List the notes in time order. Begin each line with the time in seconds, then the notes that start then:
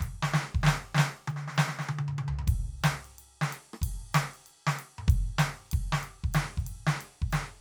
0.01 kick, ride
0.23 snare
0.28 hi-hat pedal
0.34 snare
0.55 kick
0.61 snare, hi-hat pedal
0.67 snare
0.95 snare
0.99 snare, hi-hat pedal
1.28 hi-hat pedal, high tom
1.37 snare
1.48 snare
1.55 snare, hi-hat pedal
1.69 snare
1.79 snare, hi-hat pedal
1.89 high tom
2.09 mid tom
2.19 high tom
2.28 floor tom
2.39 mid tom
2.48 kick, ride
2.80 hi-hat pedal
2.84 snare, ride
3.05 ride
3.19 hi-hat pedal, ride
3.42 snare
3.49 hi-hat pedal, ride
3.74 cross-stick
3.82 kick, ride
4.13 snare, hi-hat pedal, ride
4.34 ride
4.40 hi-hat pedal
4.47 ride
4.67 snare
4.72 hi-hat pedal
4.79 ride
4.99 mid tom
5.08 kick, ride
5.39 snare, ride
5.72 kick, ride
5.93 snare
5.99 hi-hat pedal
6.04 ride
6.24 kick
6.33 snare, hi-hat pedal, ride
6.58 kick, hi-hat pedal
6.67 ride
6.87 snare
7.01 ride
7.22 kick
7.30 kick, snare, hi-hat pedal, ride